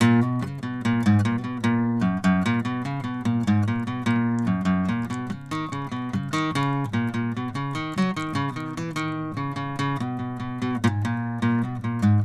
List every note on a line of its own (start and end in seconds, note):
0.01 0.42 A#2
0.44 0.62 C#3
0.64 0.83 B2
0.86 1.07 A#2
1.07 1.24 G#2
1.26 1.43 A#2
1.45 1.61 B2
1.65 2.14 A#2
2.03 2.22 F#2
2.25 2.44 F#2
2.44 2.65 E2
2.44 2.64 A#2
2.66 2.85 B2
2.87 3.04 C#3
3.05 3.24 B2
3.26 3.47 A#2
3.48 3.67 G#2
3.69 3.87 A#2
3.88 4.05 B2
4.07 4.51 A#2
4.48 4.65 F#2
4.66 4.86 F#2
4.86 5.11 E2
4.86 5.09 A#2
5.11 5.29 B2
5.31 5.59 C#3
5.52 5.72 D#3
5.73 5.90 C#3
5.93 6.12 B2
6.15 6.37 C#3
6.34 6.54 D#3
6.56 6.89 C#3
6.94 7.13 A#2
7.15 7.35 A#2
7.38 7.52 B2
7.56 7.75 C#3
7.75 7.87 A#2
7.75 7.96 D#3
7.98 8.17 C#3
7.98 8.15 F#3
8.17 8.38 D#3
8.36 8.50 C#3
8.50 8.88 B2
8.57 8.78 D#3
8.78 8.96 E3
8.97 9.37 D#3
9.38 9.55 C#3
9.57 9.79 C#3
9.80 10.00 C#3
10.02 10.20 B2
10.20 10.39 B2
10.41 10.62 B2
10.63 10.80 B2
10.89 11.09 G#2
11.06 11.41 A#2
11.43 11.63 A#2
11.63 11.80 B2
11.85 12.13 A#2
12.03 12.23 G#2